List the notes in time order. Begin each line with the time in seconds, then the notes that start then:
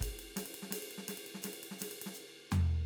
0.01 kick, hi-hat pedal, ride
0.19 ride
0.37 snare, hi-hat pedal, ride
0.46 ride
0.55 ride
0.63 snare
0.71 snare, hi-hat pedal, ride
0.83 ride
0.91 ride
0.98 snare
1.08 snare, hi-hat pedal, ride
1.18 ride
1.27 ride
1.35 snare
1.42 snare, hi-hat pedal, ride
1.54 ride
1.64 ride
1.71 snare
1.79 snare, hi-hat pedal, ride
1.92 ride
2.02 ride
2.06 snare
2.14 hi-hat pedal
2.52 floor tom, hi-hat pedal